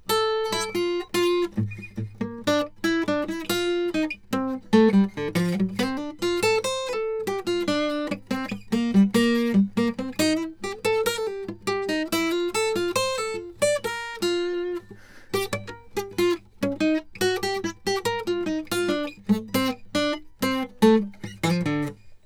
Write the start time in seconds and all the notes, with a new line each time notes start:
0.10 A4
0.76 F4
1.15 F4
2.22 A#3
2.48 D4
2.85 E4
3.09 D4
3.30 E4
3.51 F4
3.95 D#4
4.34 C4
4.74 A3
4.95 G3
5.18 D3
5.36 F3
5.61 F#3
5.80 C4
5.98 D4
6.23 F4
6.44 A4
6.66 C5
6.94 A4
7.28 G4
7.48 F4
7.69 D4
8.13 C#4
8.32 C4
8.53 B3
8.73 A#3
8.96 G3
9.15 A#3
9.55 G3
9.78 A#3
10.00 C4
10.20 D#4
10.65 G4
10.86 A4
11.07 A#4
11.17 A4
11.28 G4
11.50 E4
11.68 G4
11.90 D#4
12.13 E4
12.33 F4
12.56 A4
12.77 F4
12.97 C5
13.19 A4
13.36 F4
13.63 D5
13.86 A#4
14.23 F4
15.35 G4
15.54 D5
15.69 A#4
15.98 G4
16.20 F4
16.64 C#4
16.82 D#4
17.22 F#4
17.44 G4
17.65 E4
17.88 G4
18.06 A#4
18.28 F4
18.47 D#4
18.73 F4
18.90 D4
19.30 A3
19.55 C4
19.96 D4
20.43 C4
20.83 A3
21.45 F3
21.67 D3